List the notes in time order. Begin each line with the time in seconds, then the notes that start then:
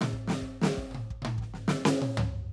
0.01 snare, high tom
0.13 kick
0.28 snare
0.30 snare
0.42 kick
0.62 snare
0.63 snare
0.78 kick
0.91 high tom
0.95 high tom
1.10 kick
1.22 high tom
1.25 high tom
1.38 kick, snare
1.54 snare
1.68 snare
1.85 snare
2.02 high tom
2.17 floor tom